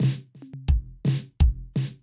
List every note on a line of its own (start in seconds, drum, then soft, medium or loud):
0.01 snare loud
0.04 snare loud
0.35 snare soft
0.43 high tom medium
0.54 floor tom medium
0.69 kick loud
1.05 snare loud
1.08 snare loud
1.40 open hi-hat medium
1.40 kick loud
1.74 snare loud
1.74 hi-hat pedal medium